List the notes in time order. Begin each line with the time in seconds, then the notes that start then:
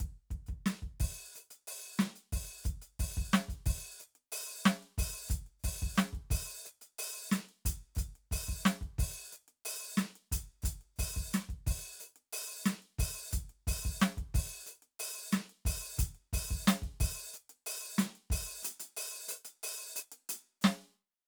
0.00 kick, closed hi-hat
0.30 kick, closed hi-hat
0.46 closed hi-hat, kick
0.66 closed hi-hat, snare
0.82 kick, closed hi-hat
1.00 open hi-hat, kick
1.35 open hi-hat, hi-hat pedal
1.50 closed hi-hat
1.67 open hi-hat
1.98 closed hi-hat, snare, hi-hat pedal
2.15 closed hi-hat
2.32 open hi-hat, kick
2.64 closed hi-hat, kick, hi-hat pedal
2.82 closed hi-hat
2.99 open hi-hat, kick
3.17 kick
3.33 closed hi-hat, snare, hi-hat pedal
3.48 closed hi-hat, kick
3.66 open hi-hat, kick
4.00 open hi-hat, hi-hat pedal
4.15 closed hi-hat
4.32 open hi-hat
4.64 closed hi-hat, snare, hi-hat pedal
4.83 closed hi-hat
4.98 open hi-hat, kick
5.28 closed hi-hat, kick, hi-hat pedal
5.46 closed hi-hat
5.59 hi-hat pedal
5.64 open hi-hat, kick
5.82 kick
5.95 closed hi-hat, snare, hi-hat pedal
6.13 kick, closed hi-hat
6.30 open hi-hat, kick
6.65 open hi-hat, hi-hat pedal
6.81 closed hi-hat
6.98 open hi-hat
7.29 closed hi-hat, snare, hi-hat pedal
7.49 closed hi-hat
7.65 open hi-hat, kick
7.95 closed hi-hat, kick, hi-hat pedal
8.15 closed hi-hat
8.31 open hi-hat, kick
8.48 kick
8.63 closed hi-hat, snare, hi-hat pedal
8.81 kick, closed hi-hat
8.98 open hi-hat, kick
9.32 open hi-hat, hi-hat pedal
9.48 closed hi-hat
9.65 open hi-hat
9.97 closed hi-hat, snare, hi-hat pedal
10.15 closed hi-hat
10.32 open hi-hat, kick
10.62 closed hi-hat, kick, hi-hat pedal
10.81 closed hi-hat
10.96 open hi-hat, kick, hi-hat pedal
11.16 kick
11.31 closed hi-hat, snare, hi-hat pedal
11.49 kick, closed hi-hat
11.66 open hi-hat, kick
12.00 open hi-hat, hi-hat pedal
12.16 closed hi-hat
12.33 open hi-hat
12.64 closed hi-hat, snare, hi-hat pedal
12.82 closed hi-hat
12.98 open hi-hat, kick
13.31 closed hi-hat, kick, hi-hat pedal
13.49 closed hi-hat
13.67 open hi-hat, kick
13.85 kick
14.00 closed hi-hat, snare, hi-hat pedal
14.17 kick, closed hi-hat
14.34 open hi-hat, kick
14.66 open hi-hat, hi-hat pedal
14.82 closed hi-hat
14.99 open hi-hat
15.31 closed hi-hat, snare, hi-hat pedal
15.49 closed hi-hat
15.65 open hi-hat, kick
15.97 closed hi-hat, kick, hi-hat pedal
16.15 closed hi-hat
16.33 open hi-hat, kick
16.50 kick
16.64 closed hi-hat, snare, hi-hat pedal
16.82 kick, closed hi-hat
17.00 open hi-hat, kick
17.33 open hi-hat, hi-hat pedal
17.49 closed hi-hat
17.66 open hi-hat
17.97 closed hi-hat, snare, hi-hat pedal
18.15 closed hi-hat
18.30 open hi-hat, kick
18.62 closed hi-hat, hi-hat pedal
18.80 closed hi-hat
18.97 open hi-hat
19.28 open hi-hat, hi-hat pedal
19.45 closed hi-hat
19.63 open hi-hat
19.96 open hi-hat, hi-hat pedal
20.12 closed hi-hat
20.29 open hi-hat
20.61 snare, hi-hat pedal